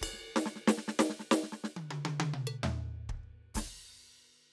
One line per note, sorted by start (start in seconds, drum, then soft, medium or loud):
0.02 kick soft
0.02 hi-hat pedal medium
0.02 ride bell loud
0.08 kick soft
0.14 snare soft
0.18 hi-hat pedal soft
0.37 snare loud
0.47 snare medium
0.56 snare soft
0.68 snare loud
0.78 snare soft
0.89 snare medium
1.00 snare loud
1.10 snare medium
1.20 snare soft
1.32 snare loud
1.44 snare soft
1.53 snare soft
1.64 snare medium
1.77 high tom medium
1.91 high tom medium
2.06 high tom loud
2.20 high tom loud
2.34 mid tom loud
2.48 percussion medium
2.64 floor tom loud
3.10 kick medium
3.17 kick soft
3.24 kick soft
3.55 kick medium
3.55 snare medium
3.55 hi-hat pedal loud
3.55 crash medium
3.64 kick soft
3.70 kick soft